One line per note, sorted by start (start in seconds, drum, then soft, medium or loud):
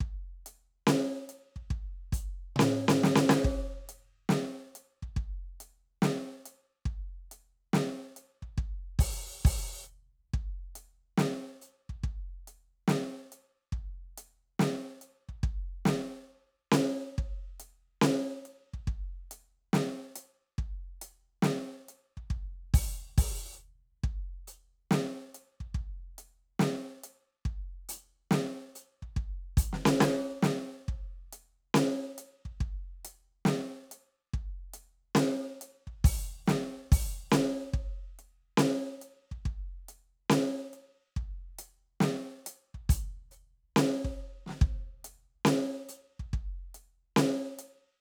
0.01 kick medium
0.01 crash soft
0.47 closed hi-hat medium
0.88 snare loud
1.30 closed hi-hat medium
1.56 kick soft
1.71 kick medium
1.71 crash soft
1.71 ride soft
2.13 closed hi-hat medium
2.13 kick medium
2.57 snare loud
2.57 high tom loud
2.89 snare loud
2.89 hi-hat pedal soft
3.04 snare loud
3.16 snare loud
3.30 snare loud
3.45 kick loud
3.45 snare soft
3.89 closed hi-hat medium
4.30 snare loud
4.76 closed hi-hat medium
5.03 kick soft
5.17 kick medium
5.17 crash soft
5.17 ride soft
5.61 closed hi-hat medium
6.03 snare loud
6.46 closed hi-hat medium
6.86 kick medium
6.86 snare soft
6.86 crash soft
6.86 ride soft
7.32 closed hi-hat medium
7.74 snare loud
8.17 closed hi-hat medium
8.43 kick soft
8.58 kick medium
8.99 open hi-hat loud
8.99 kick loud
9.41 kick soft
9.45 open hi-hat loud
9.45 kick loud
9.45 snare soft
9.84 hi-hat pedal soft
10.34 kick medium
10.76 closed hi-hat medium
11.18 snare loud
11.62 closed hi-hat medium
11.90 kick soft
12.04 kick medium
12.04 snare soft
12.04 crash soft
12.48 closed hi-hat medium
12.88 snare loud
13.33 closed hi-hat medium
13.73 kick medium
14.18 closed hi-hat medium
14.60 snare loud
15.02 closed hi-hat medium
15.29 kick soft
15.44 kick medium
15.44 snare soft
15.44 crash soft
15.44 ride soft
15.86 snare loud
16.72 snare loud
17.19 kick medium
17.19 snare soft
17.60 closed hi-hat medium
18.02 snare loud
18.46 closed hi-hat soft
18.74 kick soft
18.88 kick medium
18.88 crash soft
18.88 ride soft
19.32 closed hi-hat medium
19.74 snare loud
20.16 closed hi-hat loud
20.59 kick medium
20.59 crash soft
20.59 ride soft
21.02 closed hi-hat medium
21.43 snare loud
21.89 closed hi-hat medium
22.18 kick soft
22.31 kick medium
22.31 crash soft
22.31 ride soft
22.74 open hi-hat loud
22.74 kick loud
23.18 open hi-hat loud
23.18 kick loud
23.55 hi-hat pedal soft
24.04 kick medium
24.48 closed hi-hat medium
24.91 snare loud
25.35 closed hi-hat medium
25.61 kick soft
25.75 kick medium
25.75 snare soft
25.75 crash soft
26.19 closed hi-hat medium
26.60 snare loud
27.04 closed hi-hat medium
27.46 kick medium
27.89 closed hi-hat loud
28.31 snare loud
28.76 closed hi-hat medium
29.03 kick soft
29.17 kick medium
29.17 snare soft
29.17 crash soft
29.17 ride soft
29.58 closed hi-hat loud
29.58 kick loud
29.73 snare medium
29.86 snare loud
30.01 snare loud
30.43 snare loud
30.89 kick medium
31.33 closed hi-hat medium
31.75 snare loud
32.19 closed hi-hat medium
32.46 kick soft
32.61 kick medium
33.05 closed hi-hat medium
33.46 snare loud
33.92 closed hi-hat medium
34.34 kick medium
34.34 snare soft
34.34 crash soft
34.74 closed hi-hat medium
35.16 snare loud
35.62 closed hi-hat medium
35.88 kick soft
36.05 open hi-hat loud
36.05 kick loud
36.46 snare loud
36.46 hi-hat pedal soft
36.92 open hi-hat loud
36.92 kick loud
37.31 snare loud
37.31 hi-hat pedal soft
37.74 kick medium
38.19 closed hi-hat soft
38.58 snare loud
39.02 closed hi-hat medium
39.32 kick soft
39.46 kick medium
39.46 snare soft
39.46 crash soft
39.46 ride soft
39.89 closed hi-hat medium
40.30 snare loud
40.74 closed hi-hat soft
41.17 kick medium
41.59 closed hi-hat medium
42.01 snare loud
42.47 closed hi-hat loud
42.75 kick soft
42.90 closed hi-hat loud
42.90 kick loud
43.32 hi-hat pedal soft
43.77 snare loud
44.05 kick medium
44.47 snare soft
44.50 snare medium
44.59 kick soft
44.62 kick loud
45.05 closed hi-hat medium
45.46 snare loud
45.89 closed hi-hat medium
46.20 kick soft
46.34 kick medium
46.34 snare soft
46.34 crash soft
46.34 ride soft
46.75 closed hi-hat medium
47.17 snare loud
47.59 closed hi-hat medium